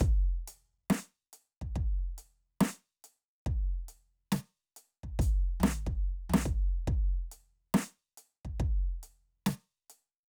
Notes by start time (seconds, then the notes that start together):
0.01 kick
0.48 closed hi-hat
0.90 snare
1.33 closed hi-hat
1.62 kick
1.76 kick, snare, crash, ride
2.18 closed hi-hat
2.61 snare
3.04 closed hi-hat
3.46 kick, snare, crash, ride
3.89 closed hi-hat
4.32 snare
4.77 closed hi-hat
5.04 kick
5.19 closed hi-hat, kick, snare
5.60 snare, floor tom
5.87 kick
6.30 floor tom
6.34 snare
6.46 kick
6.88 kick, snare, crash, ride
7.32 closed hi-hat
7.74 snare
8.18 closed hi-hat
8.45 kick
8.60 kick
9.03 closed hi-hat
9.46 snare
9.90 closed hi-hat